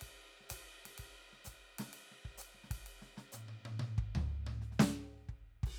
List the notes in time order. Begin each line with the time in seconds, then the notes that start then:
0.01 kick, ride
0.40 snare
0.49 kick, hi-hat pedal, ride
0.85 snare, ride
0.98 kick, ride
1.32 snare
1.44 kick, snare, hi-hat pedal, ride
1.78 snare, ride
1.93 ride
2.11 snare
2.25 kick
2.38 hi-hat pedal, ride
2.54 snare
2.63 snare
2.71 kick, ride
2.81 hi-hat pedal
2.86 ride
3.01 snare
3.17 snare
3.32 hi-hat pedal, high tom
3.48 high tom
3.65 high tom
3.79 high tom
3.98 kick
4.15 floor tom
4.46 high tom
4.61 snare
4.71 snare
4.74 snare
4.79 snare
5.29 kick
5.63 kick, crash